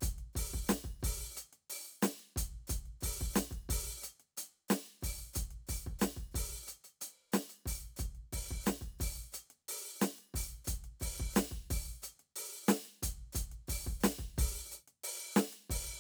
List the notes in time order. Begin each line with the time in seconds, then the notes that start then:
0.01 closed hi-hat, kick, hi-hat pedal
0.18 closed hi-hat
0.33 open hi-hat, kick, hi-hat pedal
0.54 kick
0.67 closed hi-hat, snare, hi-hat pedal
0.84 kick, closed hi-hat
1.00 kick, hi-hat pedal
1.04 open hi-hat
1.35 closed hi-hat, hi-hat pedal
1.53 closed hi-hat
1.70 open hi-hat
2.02 closed hi-hat, snare, hi-hat pedal
2.20 closed hi-hat
2.36 closed hi-hat, kick
2.67 closed hi-hat, kick, hi-hat pedal
2.86 closed hi-hat
3.01 open hi-hat, kick, hi-hat pedal
3.21 kick
3.34 closed hi-hat, snare, hi-hat pedal
3.51 kick, closed hi-hat
3.69 open hi-hat, kick
4.02 closed hi-hat, hi-hat pedal
4.20 closed hi-hat
4.37 closed hi-hat, hi-hat pedal
4.69 closed hi-hat, snare, hi-hat pedal
4.87 closed hi-hat
5.01 open hi-hat, kick, hi-hat pedal
5.34 closed hi-hat, kick, hi-hat pedal
5.51 closed hi-hat
5.67 open hi-hat, kick, hi-hat pedal
5.87 kick
5.99 closed hi-hat, snare, hi-hat pedal
6.17 kick, closed hi-hat
6.32 kick, hi-hat pedal
6.36 open hi-hat
6.67 closed hi-hat, hi-hat pedal
6.84 closed hi-hat
7.01 open hi-hat, hi-hat pedal
7.32 closed hi-hat, snare, hi-hat pedal
7.50 closed hi-hat
7.66 open hi-hat, kick, hi-hat pedal
7.97 closed hi-hat, kick, hi-hat pedal
8.15 closed hi-hat
8.33 open hi-hat, kick
8.51 kick
8.64 closed hi-hat, snare, hi-hat pedal
8.81 kick, closed hi-hat
8.99 open hi-hat, kick, hi-hat pedal
9.33 closed hi-hat, hi-hat pedal
9.50 closed hi-hat
9.69 open hi-hat
10.00 closed hi-hat, snare, hi-hat pedal
10.19 closed hi-hat
10.34 open hi-hat, kick, hi-hat pedal
10.65 closed hi-hat, kick, hi-hat pedal
10.84 closed hi-hat
11.00 open hi-hat, kick, hi-hat pedal
11.20 kick
11.33 closed hi-hat, snare, hi-hat pedal
11.52 kick, closed hi-hat
11.71 open hi-hat, kick
12.02 closed hi-hat, hi-hat pedal
12.20 closed hi-hat
12.36 open hi-hat
12.67 closed hi-hat, snare, hi-hat pedal
12.85 closed hi-hat
13.03 closed hi-hat, kick
13.33 closed hi-hat, kick, hi-hat pedal
13.52 closed hi-hat
13.68 open hi-hat, kick, hi-hat pedal
13.87 kick
14.01 closed hi-hat, snare, hi-hat pedal
14.19 kick, closed hi-hat
14.36 open hi-hat, kick, hi-hat pedal
14.72 open hi-hat, hi-hat pedal
14.88 closed hi-hat
15.04 open hi-hat
15.36 open hi-hat, snare, hi-hat pedal
15.53 closed hi-hat
15.70 open hi-hat, kick